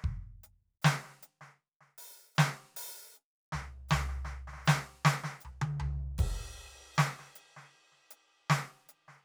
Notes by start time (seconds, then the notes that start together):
0.01 kick, snare
0.05 snare
0.09 snare
0.13 snare
0.21 snare
0.44 closed hi-hat
0.82 snare, hi-hat pedal
1.04 snare
1.09 snare
1.23 closed hi-hat
1.42 snare
1.81 snare
1.98 open hi-hat
2.35 snare, hi-hat pedal
2.63 snare
2.77 open hi-hat
3.15 hi-hat pedal
3.53 snare, floor tom
3.89 snare, floor tom, hi-hat pedal
4.09 snare
4.25 snare
4.48 snare
4.54 snare
4.58 snare
4.62 snare, hi-hat pedal
4.67 snare
5.05 snare
5.24 snare
5.41 hi-hat pedal
5.45 floor tom
5.62 high tom
5.80 floor tom
6.19 kick, hi-hat pedal, crash
6.57 open hi-hat
6.95 snare, hi-hat pedal
7.20 snare
7.36 closed hi-hat
7.57 snare
7.92 snare
8.11 closed hi-hat
8.50 snare
8.89 closed hi-hat
9.09 snare